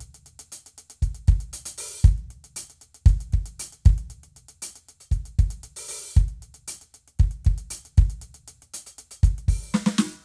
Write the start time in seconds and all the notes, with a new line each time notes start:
0.01 closed hi-hat
0.15 closed hi-hat
0.26 closed hi-hat
0.40 closed hi-hat
0.52 closed hi-hat
0.67 closed hi-hat
0.78 closed hi-hat
0.90 closed hi-hat
1.03 kick, closed hi-hat
1.15 closed hi-hat
1.28 kick, closed hi-hat
1.41 closed hi-hat
1.54 closed hi-hat
1.66 closed hi-hat
1.78 open hi-hat
1.96 open hi-hat
2.03 kick, closed hi-hat, hi-hat pedal
2.18 closed hi-hat
2.31 closed hi-hat
2.45 closed hi-hat
2.57 closed hi-hat
2.70 closed hi-hat
2.82 closed hi-hat
2.95 closed hi-hat
3.06 kick, closed hi-hat
3.21 closed hi-hat
3.33 kick, closed hi-hat
3.46 closed hi-hat
3.60 closed hi-hat
3.73 closed hi-hat
3.86 kick, closed hi-hat
3.98 closed hi-hat
4.10 closed hi-hat
4.24 closed hi-hat
4.37 closed hi-hat
4.49 closed hi-hat
4.63 closed hi-hat
4.76 closed hi-hat
4.89 closed hi-hat
5.01 closed hi-hat
5.12 kick, closed hi-hat
5.26 closed hi-hat
5.39 kick, closed hi-hat
5.51 closed hi-hat
5.64 closed hi-hat
5.77 open hi-hat
5.89 open hi-hat
6.06 open hi-hat
6.15 kick, closed hi-hat, hi-hat pedal
6.29 closed hi-hat
6.43 closed hi-hat
6.55 closed hi-hat
6.68 closed hi-hat
6.82 closed hi-hat
6.95 closed hi-hat
7.08 closed hi-hat
7.19 kick, closed hi-hat
7.32 closed hi-hat
7.45 kick, closed hi-hat
7.58 closed hi-hat
7.71 closed hi-hat
7.86 closed hi-hat
7.98 kick, closed hi-hat
8.10 closed hi-hat
8.22 closed hi-hat
8.35 closed hi-hat
8.48 closed hi-hat
8.63 closed hi-hat
8.74 closed hi-hat
8.87 closed hi-hat
8.99 closed hi-hat
9.11 closed hi-hat
9.24 kick, closed hi-hat
9.39 closed hi-hat
9.49 open hi-hat, kick
9.63 open hi-hat
9.72 snare, hi-hat pedal
9.87 snare
9.99 snare
10.12 closed hi-hat